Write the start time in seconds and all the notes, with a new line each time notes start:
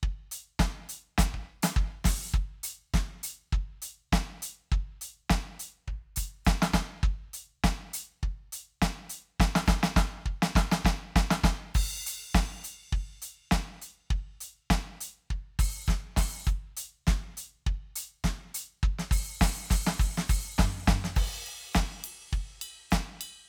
0.03 kick
0.31 closed hi-hat
0.59 kick, snare
0.89 closed hi-hat
1.18 open hi-hat, kick, snare, hi-hat pedal
1.34 kick
1.62 closed hi-hat, snare
1.76 kick
2.04 open hi-hat, kick, snare
2.32 kick, hi-hat pedal
2.63 closed hi-hat
2.94 kick, snare
3.23 closed hi-hat
3.53 kick
3.82 closed hi-hat
4.12 kick, snare
4.42 closed hi-hat
4.72 kick
5.01 closed hi-hat
5.30 kick, snare
5.59 closed hi-hat
5.88 kick
6.16 open hi-hat, kick
6.45 kick, snare, hi-hat pedal
6.62 snare
6.74 kick, snare
7.03 kick
7.33 closed hi-hat
7.64 kick, snare
7.93 closed hi-hat
8.23 kick
8.52 closed hi-hat
8.82 kick, snare
9.10 closed hi-hat
9.40 kick, snare
9.55 snare
9.66 kick, snare, hi-hat pedal
9.83 snare
9.96 kick, snare
10.13 cross-stick
10.17 cross-stick
10.26 kick
10.42 snare
10.55 kick, snare
10.72 snare
10.85 kick, snare
11.16 kick, snare
11.31 snare
11.44 kick, snare
11.75 kick, hi-hat pedal, crash
12.06 closed hi-hat
12.35 kick, snare
12.64 closed hi-hat
12.92 kick
13.22 closed hi-hat
13.51 kick, snare
13.82 closed hi-hat
14.10 kick
14.41 closed hi-hat
14.70 kick, snare
15.01 closed hi-hat
15.30 kick
15.59 open hi-hat, kick
15.87 kick, snare, hi-hat pedal
16.16 open hi-hat, kick, snare
16.46 kick, hi-hat pedal
16.77 closed hi-hat
17.07 kick, snare
17.37 closed hi-hat
17.66 kick
17.96 closed hi-hat
18.24 kick, snare
18.54 closed hi-hat
18.83 kick
18.99 snare
19.11 open hi-hat, kick
19.41 open hi-hat, kick, snare
19.70 open hi-hat, kick, snare
19.87 snare
20.00 open hi-hat, kick
20.17 snare
20.29 open hi-hat, kick
20.58 kick, snare, high tom
20.87 kick, snare, high tom
21.04 snare
21.16 kick, hi-hat pedal, crash
21.46 ride
21.73 kick, snare, hi-hat pedal
22.04 ride
22.31 kick, hi-hat pedal, ride
22.61 ride bell
22.90 kick, snare, hi-hat pedal
23.21 ride bell